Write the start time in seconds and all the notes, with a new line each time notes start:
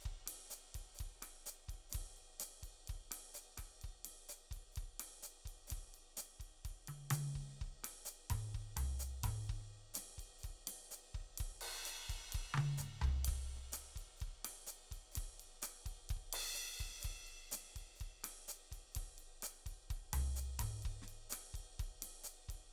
0.01 hi-hat pedal, ride
0.06 kick, mid tom
0.11 kick
0.27 cross-stick, ride
0.51 hi-hat pedal, ride
0.75 kick, ride
0.81 kick
0.95 hi-hat pedal
0.99 kick, ride
1.06 kick
1.23 cross-stick, ride
1.46 hi-hat pedal, ride
1.69 kick, ride
1.74 kick
1.90 snare, hi-hat pedal, ride
1.95 kick
2.00 kick
2.17 ride
2.40 snare, hi-hat pedal, ride
2.63 kick, ride
2.88 kick, ride
2.95 kick
3.12 cross-stick, ride
3.35 hi-hat pedal, ride
3.57 kick, cross-stick, snare, ride
3.82 kick, ride
3.89 kick
4.05 snare, ride
4.29 hi-hat pedal, ride
4.51 kick, ride
4.57 kick
4.72 hi-hat pedal
4.76 kick, ride
4.83 kick
5.00 cross-stick, snare, ride
5.23 hi-hat pedal, ride
5.46 kick, ride
5.68 snare, hi-hat pedal, ride
5.72 kick
5.77 kick
5.94 ride
6.17 snare, hi-hat pedal, ride
6.40 kick, ride
6.65 kick, ride
6.70 kick
6.88 high tom, ride
7.11 hi-hat pedal, high tom, ride
7.36 kick
7.41 kick
7.49 snare
7.52 snare
7.62 kick
7.67 kick
7.84 cross-stick, snare, ride
8.06 hi-hat pedal, ride
8.30 kick, mid tom, ride
8.37 kick
8.55 kick, ride
8.60 kick
8.77 floor tom, ride
9.00 hi-hat pedal, ride
9.24 kick, mid tom, ride
9.30 kick
9.44 hi-hat pedal
9.50 kick
9.56 kick
9.60 snare
9.94 snare, hi-hat pedal, ride
10.18 kick, ride
10.39 hi-hat pedal
10.44 kick, ride
10.50 kick
10.67 snare, ride
10.91 hi-hat pedal
11.15 kick
11.20 kick
11.38 kick, ride
11.46 kick
11.61 crash
11.86 hi-hat pedal, ride
12.10 kick, ride
12.15 kick
12.33 kick, ride
12.41 kick
12.54 high tom
12.58 high tom
12.78 hi-hat pedal, mid tom
13.02 kick, floor tom
13.09 kick
13.25 kick, cross-stick, snare, ride
13.56 snare
13.73 cross-stick, snare, hi-hat pedal, ride
13.96 kick, ride
14.01 kick
14.17 hi-hat pedal, ride
14.22 kick
14.28 kick
14.45 cross-stick, snare, ride
14.67 hi-hat pedal, ride
14.92 kick, ride
14.97 kick
15.12 snare, hi-hat pedal, ride
15.18 kick
15.23 kick
15.40 ride
15.52 snare
15.62 cross-stick, snare, hi-hat pedal, ride
15.86 kick, ride
15.91 kick
16.10 kick, ride
16.17 kick
16.33 ride, crash
16.54 hi-hat pedal, ride
16.80 kick, ride
16.86 kick, snare
17.01 kick, hi-hat pedal, ride
17.11 kick
17.27 ride
17.52 snare, hi-hat pedal, ride
17.76 kick, ride
17.81 kick
17.96 hi-hat pedal
18.01 kick, ride
18.06 kick
18.24 cross-stick, snare, ride
18.48 hi-hat pedal, ride
18.72 kick, ride
18.77 kick
18.92 snare, hi-hat pedal, ride
18.97 kick
19.02 kick
19.19 ride
19.43 cross-stick, snare, hi-hat pedal, ride
19.66 kick, ride
19.72 kick
19.91 kick, ride
19.96 kick
20.13 floor tom, ride
20.36 hi-hat pedal
20.59 kick, mid tom, ride
20.67 kick
20.83 kick, ride
20.92 kick
21.02 snare
21.08 ride
21.30 cross-stick, snare, hi-hat pedal, ride
21.54 kick, ride
21.60 kick
21.80 kick, ride
21.86 kick
22.02 snare, ride
22.24 hi-hat pedal, ride
22.49 kick, ride
22.54 kick